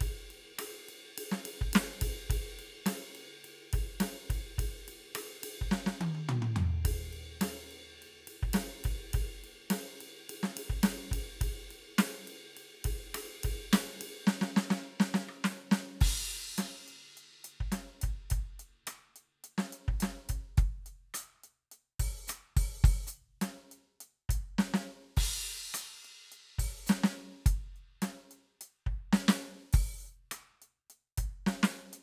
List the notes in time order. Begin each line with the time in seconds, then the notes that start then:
0.01 kick, ride
0.31 ride
0.59 cross-stick, ride
0.89 ride
1.18 ride
1.32 snare
1.46 ride
1.61 kick
1.73 snare, ride
2.02 kick, ride
2.30 kick, ride
2.59 ride
2.86 snare, ride
3.15 ride
3.45 ride
3.73 kick, ride
4.00 snare, ride
4.30 kick, ride
4.58 kick, ride
4.88 ride
5.15 cross-stick, ride
5.44 ride
5.61 kick
5.72 snare
5.87 snare
6.01 high tom
6.15 high tom
6.29 mid tom
6.42 mid tom
6.56 floor tom
6.85 kick, ride
7.13 ride
7.41 snare, ride
7.71 ride
8.02 ride
8.28 ride
8.43 kick
8.54 snare, ride
8.84 kick, ride
9.14 kick, ride
9.44 ride
9.70 snare, ride
10.01 ride
10.30 ride
10.43 snare
10.57 ride
10.70 kick
10.83 snare, ride
11.12 kick, ride
11.41 kick, ride
11.71 ride
11.99 snare, ride
12.28 ride
12.57 ride
12.85 kick, ride
13.15 cross-stick, ride
13.44 kick, ride
13.73 snare, ride
14.01 ride
14.27 snare
14.42 snare
14.57 snare
14.71 snare
15.00 snare
15.14 snare
15.29 cross-stick
15.44 snare
15.72 snare
16.01 kick, crash
16.31 closed hi-hat
16.58 snare, closed hi-hat
16.88 closed hi-hat
17.17 closed hi-hat
17.45 closed hi-hat
17.61 kick
17.72 snare, closed hi-hat
18.02 kick, closed hi-hat
18.30 kick, closed hi-hat
18.60 closed hi-hat
18.87 cross-stick, closed hi-hat
19.16 closed hi-hat
19.44 closed hi-hat
19.58 snare
19.73 closed hi-hat
19.88 kick
20.00 snare, closed hi-hat
20.29 kick, closed hi-hat
20.58 kick, closed hi-hat
20.86 closed hi-hat
21.14 closed hi-hat, cross-stick
21.44 closed hi-hat
21.72 closed hi-hat
22.00 kick, open hi-hat
22.08 kick
22.28 cross-stick, closed hi-hat, hi-hat pedal
22.57 kick, open hi-hat
22.84 kick, open hi-hat
23.07 hi-hat pedal
23.42 snare, closed hi-hat
23.72 closed hi-hat
24.01 closed hi-hat
24.29 kick, closed hi-hat
24.59 snare
24.74 snare
25.17 kick, crash
25.45 closed hi-hat
25.74 closed hi-hat, cross-stick
26.05 closed hi-hat
26.32 closed hi-hat
26.59 kick, open hi-hat
26.66 kick
26.87 snare, hi-hat pedal
27.04 snare
27.46 kick, closed hi-hat
27.76 closed hi-hat
28.02 snare, closed hi-hat
28.31 closed hi-hat
28.61 closed hi-hat
28.87 kick
29.13 snare
29.28 snare
29.73 kick, open hi-hat
30.06 open hi-hat
30.32 cross-stick, closed hi-hat
30.62 closed hi-hat
30.90 closed hi-hat
31.18 kick, closed hi-hat
31.47 snare
31.63 snare
31.93 closed hi-hat